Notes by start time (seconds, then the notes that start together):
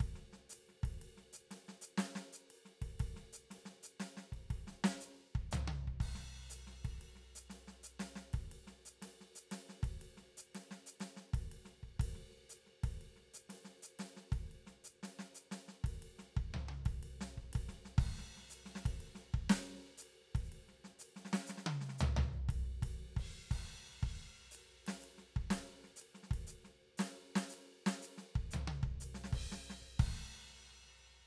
0.01 kick, ride
0.16 snare
0.34 snare
0.50 hi-hat pedal, ride
0.69 snare
0.84 kick, ride
1.02 ride
1.18 snare
1.34 hi-hat pedal
1.52 snare, ride
1.69 snare
1.82 hi-hat pedal
1.99 snare, ride
2.16 snare
2.34 hi-hat pedal
2.51 hi-hat pedal, ride
2.66 snare
2.82 kick, ride
3.01 kick, ride
3.17 snare
3.34 hi-hat pedal
3.51 snare, ride
3.66 snare
3.84 hi-hat pedal
4.01 snare, ride
4.18 snare
4.33 kick, ride
4.51 kick, ride
4.68 snare
4.85 snare
5.01 hi-hat pedal, ride
5.36 kick
5.52 floor tom, hi-hat pedal
5.69 high tom
5.88 kick
6.01 kick, crash
6.16 snare
6.36 snare
6.51 hi-hat pedal, ride
6.68 snare
6.85 kick, ride
7.02 ride
7.16 snare
7.36 hi-hat pedal
7.51 snare, ride
7.68 snare
7.84 hi-hat pedal
8.00 snare, ride
8.16 snare
8.34 kick, ride
8.52 ride
8.68 snare
8.86 hi-hat pedal
9.03 snare, ride
9.22 snare
9.36 hi-hat pedal
9.52 snare, ride
9.70 snare
9.84 kick, ride
10.02 ride
10.18 snare
10.38 hi-hat pedal
10.56 snare, ride
10.72 snare
10.87 hi-hat pedal
11.01 snare, ride
11.17 snare
11.34 kick, ride
11.53 ride
11.66 snare
11.84 kick
12.00 kick, ride
12.15 kick, snare
12.32 snare
12.50 hi-hat pedal, ride
12.67 snare
12.84 kick, ride
13.02 ride
13.17 snare
13.35 hi-hat pedal
13.50 snare, ride
13.55 hi-hat pedal
13.66 snare
13.83 hi-hat pedal
14.00 snare, ride
14.17 snare
14.33 kick, ride
14.52 ride
14.67 snare
14.85 hi-hat pedal
15.04 snare, ride
15.20 snare
15.36 hi-hat pedal
15.52 snare, ride
15.69 snare
15.85 kick, ride
16.03 ride
16.19 snare
16.37 kick
16.55 floor tom
16.69 high tom
16.86 kick, ride
17.04 ride
17.22 snare
17.38 kick
17.54 kick, ride
17.69 snare
17.86 snare
17.99 kick, crash
18.19 snare
18.38 snare
18.51 hi-hat pedal, ride
18.66 snare
18.76 snare
18.86 kick, ride
19.01 ride
19.16 snare
19.35 kick
19.50 snare, ride
19.86 snare
19.99 hi-hat pedal
20.03 ride
20.21 snare
20.36 kick, ride
20.46 hi-hat pedal
20.53 ride
20.69 snare
20.85 snare
21.00 hi-hat pedal, ride
21.17 snare
21.26 snare
21.34 snare
21.47 snare, hi-hat pedal
21.58 snare
21.67 high tom
21.82 snare
21.90 snare
21.95 snare
21.99 floor tom, hi-hat pedal
22.17 floor tom
22.33 snare
22.49 kick, ride
22.65 snare
22.83 kick, ride
23.17 kick, crash
23.52 kick, crash
23.86 snare
24.04 kick, crash
24.52 hi-hat pedal, ride
24.88 snare, ride
25.01 hi-hat pedal, ride
25.19 snare
25.37 kick
25.51 snare, ride
25.70 snare
25.84 snare
25.97 hi-hat pedal
26.02 ride
26.15 snare
26.24 snare
26.32 kick, ride
26.48 hi-hat pedal
26.52 ride
26.65 snare
26.98 snare, hi-hat pedal, ride
27.36 snare, ride
27.50 hi-hat pedal
27.55 ride
27.87 snare, ride
28.03 hi-hat pedal, ride
28.19 snare
28.36 kick
28.52 floor tom, hi-hat pedal
28.68 high tom
28.84 kick
29.01 hi-hat pedal, ride
29.15 snare
29.25 snare
29.33 kick, crash
29.53 snare
29.71 snare
29.82 kick
30.00 kick, crash